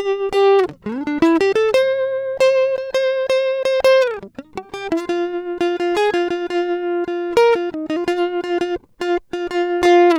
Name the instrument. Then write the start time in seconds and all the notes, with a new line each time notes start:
acoustic guitar
0.01 G4
0.35 G4
0.89 B3
1.09 D4
1.24 E4
1.43 G4
1.58 A4
1.76 C5
2.42 C5
2.78 C5
2.96 C5
3.32 C5
3.67 C5
3.86 C5
4.59 G4
4.76 G4
4.94 F4
5.11 F4
5.63 F4
5.82 F4
5.99 G#4
6.16 F4
6.30 F4
6.53 F4
7.10 F4
7.39 A#4
7.58 F4
7.76 D#4
7.92 F4
8.10 F4
8.46 F4
8.64 F4
9.03 F4
9.35 F4
9.53 F4
9.85 F4